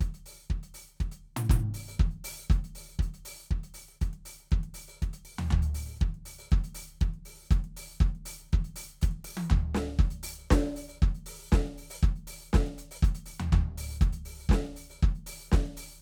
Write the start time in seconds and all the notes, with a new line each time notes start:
0.01 closed hi-hat, kick
0.14 closed hi-hat
0.26 open hi-hat
0.41 open hi-hat
0.45 hi-hat pedal
0.50 kick, closed hi-hat
0.63 closed hi-hat
0.75 open hi-hat
0.89 open hi-hat
0.96 hi-hat pedal
1.01 kick, closed hi-hat
1.12 closed hi-hat
1.25 open hi-hat
1.37 mid tom
1.45 hi-hat pedal
1.50 kick, mid tom
1.74 open hi-hat
1.88 open hi-hat
1.95 hi-hat pedal
2.00 kick, closed hi-hat
2.11 closed hi-hat
2.25 open hi-hat
2.39 open hi-hat
2.45 hi-hat pedal
2.50 closed hi-hat, kick
2.64 closed hi-hat
2.76 open hi-hat
2.89 open hi-hat
2.94 hi-hat pedal
2.99 closed hi-hat, kick
3.14 closed hi-hat
3.26 open hi-hat
3.40 open hi-hat
3.47 hi-hat pedal
3.51 kick, closed hi-hat
3.64 closed hi-hat
3.74 open hi-hat
3.89 open hi-hat
3.96 hi-hat pedal
4.02 closed hi-hat, kick
4.13 closed hi-hat
4.26 open hi-hat
4.41 open hi-hat
4.47 hi-hat pedal
4.51 kick, closed hi-hat
4.64 closed hi-hat
4.75 open hi-hat
4.88 open hi-hat
4.97 hi-hat pedal
5.03 kick, closed hi-hat
5.14 closed hi-hat
5.25 open hi-hat
5.39 floor tom
5.49 kick, floor tom, hi-hat pedal
5.63 closed hi-hat
5.75 open hi-hat
5.86 open hi-hat
5.97 hi-hat pedal
6.01 kick, closed hi-hat
6.15 closed hi-hat
6.26 open hi-hat
6.39 open hi-hat
6.47 hi-hat pedal
6.52 kick, closed hi-hat
6.64 closed hi-hat
6.75 open hi-hat
6.90 open hi-hat
6.96 hi-hat pedal
7.01 kick, closed hi-hat
7.14 closed hi-hat
7.26 open hi-hat
7.42 open hi-hat
7.47 hi-hat pedal
7.51 kick, closed hi-hat
7.64 closed hi-hat
7.77 open hi-hat
7.91 open hi-hat
7.97 kick, hi-hat pedal
8.02 closed hi-hat
8.15 closed hi-hat
8.26 open hi-hat
8.40 open hi-hat
8.49 hi-hat pedal
8.53 kick, closed hi-hat
8.65 closed hi-hat
8.76 open hi-hat
8.89 open hi-hat
8.98 closed hi-hat, hi-hat pedal
9.03 kick
9.11 closed hi-hat
9.25 open hi-hat
9.37 high tom
9.46 hi-hat pedal
9.50 kick, floor tom
9.75 snare
9.97 kick, hi-hat pedal
10.02 closed hi-hat
10.11 closed hi-hat
10.23 open hi-hat
10.39 open hi-hat
10.48 kick, snare, hi-hat pedal
10.77 open hi-hat
10.88 open hi-hat
10.97 hi-hat pedal
11.03 kick, closed hi-hat
11.15 closed hi-hat
11.26 open hi-hat
11.40 open hi-hat
11.50 kick, snare, hi-hat pedal
11.66 closed hi-hat
11.78 open hi-hat
11.91 open hi-hat
11.97 hi-hat pedal
12.03 kick, closed hi-hat
12.16 closed hi-hat
12.28 open hi-hat
12.40 open hi-hat
12.49 hi-hat pedal
12.54 kick, snare
12.67 closed hi-hat
12.78 open hi-hat
12.91 open hi-hat
12.97 hi-hat pedal
13.03 closed hi-hat, kick
13.15 closed hi-hat
13.26 open hi-hat
13.40 floor tom
13.47 hi-hat pedal
13.53 kick, floor tom
13.78 open hi-hat
13.90 open hi-hat
13.96 hi-hat pedal
14.02 kick, closed hi-hat
14.13 closed hi-hat
14.26 open hi-hat
14.40 open hi-hat
14.45 hi-hat pedal
14.50 kick, snare
14.65 closed hi-hat
14.77 open hi-hat
14.90 open hi-hat
14.98 hi-hat pedal
15.03 kick, closed hi-hat
15.15 closed hi-hat
15.27 open hi-hat
15.40 open hi-hat
15.48 snare, hi-hat pedal
15.53 kick
15.66 closed hi-hat
15.77 open hi-hat
15.92 open hi-hat
15.98 hi-hat pedal